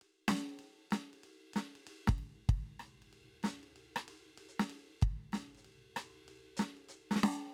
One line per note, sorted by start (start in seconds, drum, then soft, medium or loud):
0.01 ride soft
0.28 snare loud
0.28 ride soft
0.49 ride soft
0.59 ride soft
0.91 snare medium
0.91 ride soft
1.13 ride soft
1.23 ride soft
1.53 snare soft
1.53 ride soft
1.75 ride soft
1.87 ride soft
2.07 kick medium
2.07 snare medium
2.18 ride medium
2.49 kick medium
2.49 ride medium
2.79 cross-stick medium
2.79 ride soft
2.85 hi-hat pedal soft
3.02 ride soft
3.13 ride soft
3.43 snare medium
3.43 ride soft
3.47 hi-hat pedal medium
3.63 ride soft
3.76 ride soft
3.96 cross-stick medium
4.08 ride soft
4.38 ride soft
4.49 hi-hat pedal soft
4.59 snare medium
4.70 ride soft
5.02 kick medium
5.02 ride soft
5.32 snare medium
5.32 ride soft
5.37 hi-hat pedal soft
5.55 hi-hat pedal soft
5.55 ride soft
5.64 ride soft
5.96 cross-stick medium
5.96 hi-hat pedal soft
5.96 ride soft
6.28 ride soft
6.57 snare medium
6.57 hi-hat pedal medium
6.57 ride soft
6.77 ride soft
6.89 hi-hat pedal soft
6.89 ride soft
7.11 snare medium
7.16 snare medium
7.16 hi-hat pedal soft
7.23 snare loud